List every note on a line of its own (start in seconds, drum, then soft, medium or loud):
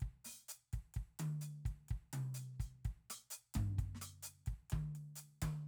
0.01 kick soft
0.01 closed hi-hat soft
0.25 open hi-hat medium
0.25 snare soft
0.49 hi-hat pedal medium
0.74 kick soft
0.74 closed hi-hat soft
0.95 kick soft
0.95 closed hi-hat soft
1.20 closed hi-hat medium
1.20 high tom medium
1.42 closed hi-hat soft
1.42 hi-hat pedal medium
1.66 kick soft
1.66 closed hi-hat soft
1.72 kick soft
1.89 kick soft
1.89 closed hi-hat soft
2.14 closed hi-hat medium
2.14 mid tom medium
2.35 closed hi-hat soft
2.35 hi-hat pedal medium
2.54 snare soft
2.60 closed hi-hat soft
2.60 kick soft
2.85 kick soft
2.85 closed hi-hat soft
3.11 closed hi-hat medium
3.11 cross-stick soft
3.11 snare soft
3.31 closed hi-hat soft
3.31 hi-hat pedal medium
3.55 kick soft
3.55 closed hi-hat medium
3.55 floor tom medium
3.79 kick soft
3.79 closed hi-hat soft
3.96 snare soft
4.02 closed hi-hat medium
4.02 cross-stick soft
4.23 closed hi-hat soft
4.23 hi-hat pedal medium
4.47 kick soft
4.47 closed hi-hat soft
4.54 kick soft
4.71 kick soft
4.71 closed hi-hat soft
4.71 high tom medium
4.96 closed hi-hat soft
5.16 closed hi-hat soft
5.16 hi-hat pedal medium
5.42 kick soft
5.42 closed hi-hat medium
5.42 high tom medium